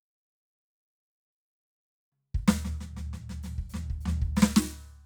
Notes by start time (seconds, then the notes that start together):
2.13 mid tom
2.35 kick
2.48 snare, hi-hat pedal, floor tom
2.65 snare, floor tom
2.81 snare, floor tom
2.97 snare, floor tom
3.14 snare, floor tom
3.30 snare, floor tom
3.44 snare, floor tom, hi-hat pedal
3.59 kick
3.70 hi-hat pedal
3.74 snare, floor tom
3.90 kick
4.01 hi-hat pedal
4.06 snare, floor tom
4.22 kick
4.37 snare, hi-hat pedal
4.43 snare
4.57 snare
4.70 hi-hat pedal